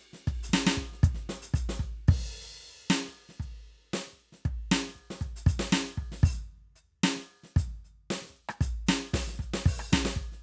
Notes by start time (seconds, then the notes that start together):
0.01 hi-hat pedal
0.14 snare
0.28 kick, ride
0.44 closed hi-hat
0.50 kick, hi-hat pedal
0.54 snare
0.67 snare
0.78 kick
0.93 snare
1.04 kick, closed hi-hat
1.15 snare
1.30 snare
1.42 closed hi-hat
1.55 closed hi-hat, kick
1.70 snare
1.80 kick
2.09 kick, crash
2.91 closed hi-hat, snare
3.06 kick, snare
3.30 snare
3.40 kick, closed hi-hat
3.94 closed hi-hat, snare
4.08 snare
4.13 kick
4.20 closed hi-hat
4.33 snare
4.46 kick, closed hi-hat
4.72 closed hi-hat, snare
4.88 snare
4.96 kick, closed hi-hat
5.11 snare
5.16 snare
5.22 kick, closed hi-hat
5.37 closed hi-hat
5.47 closed hi-hat, kick
5.60 snare
5.73 snare
5.86 closed hi-hat
5.98 kick
6.13 snare
6.24 open hi-hat, kick
6.76 hi-hat pedal
7.04 closed hi-hat, snare
7.17 snare
7.44 snare
7.57 closed hi-hat, kick
7.85 closed hi-hat
8.11 closed hi-hat, snare
8.23 snare
8.25 snare
8.28 kick, snare
8.36 closed hi-hat
8.50 cross-stick
8.62 closed hi-hat, kick
8.87 kick, snare, hi-hat pedal
9.14 open hi-hat, kick, snare
9.28 snare
9.33 snare, hi-hat pedal
9.39 closed hi-hat, kick, snare
9.54 snare
9.66 open hi-hat, kick
9.80 cross-stick
9.90 kick, snare, hi-hat pedal
10.06 snare
10.17 kick
10.33 snare